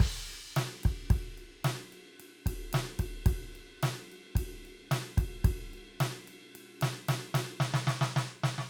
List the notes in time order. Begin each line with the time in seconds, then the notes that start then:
0.01 kick, crash
0.29 ride
0.56 snare, ride
0.83 kick, ride
1.10 kick, ride
1.38 ride
1.64 snare, ride
1.92 ride
2.20 ride
2.46 kick, ride
2.73 snare, ride
2.99 kick, ride
3.26 kick, ride
3.55 ride
3.83 snare, ride
4.12 ride
4.35 kick, ride
4.65 ride
4.91 snare, ride
5.17 kick, ride
5.44 kick, ride
5.73 ride
6.00 snare, ride
6.27 ride
6.55 ride
6.81 snare, ride
7.09 snare, ride
7.34 snare, ride
7.60 snare
7.74 snare
7.87 snare
8.01 snare
8.16 snare
8.44 snare
8.58 snare